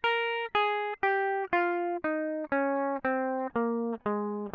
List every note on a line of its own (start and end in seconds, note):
0.04 0.50 A#4
0.55 0.96 G#4
1.04 1.49 G4
1.54 2.01 F4
2.05 2.49 D#4
2.52 3.01 C#4
3.05 3.50 C4
3.57 3.98 A#3
4.07 4.52 G#3